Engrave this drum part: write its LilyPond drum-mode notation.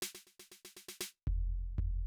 \new DrumStaff \drummode { \time 4/4 \tempo 4 = 116 <sn hhp>16 sn16 sn16 sn16 sn16 sn16 sn16 sn16 sn8 <bd tomfh>8 r8 <bd tomfh>8 | }